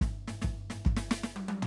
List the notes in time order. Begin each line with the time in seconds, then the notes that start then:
0.01 kick, snare, floor tom
0.28 snare, floor tom
0.42 kick, snare, floor tom
0.70 snare, floor tom
0.85 kick, floor tom
0.97 snare
1.11 snare
1.23 snare
1.36 high tom
1.48 high tom
1.62 floor tom